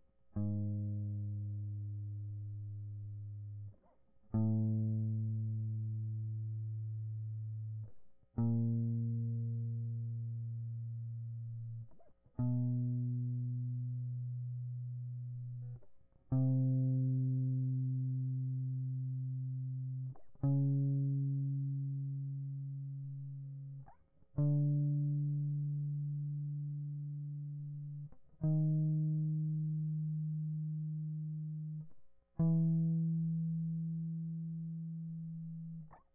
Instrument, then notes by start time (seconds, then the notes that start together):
electric guitar
0.38 G#2
4.35 A2
8.39 A#2
12.41 B2
16.34 C3
20.44 C#3
24.39 D3
28.45 D#3
32.40 E3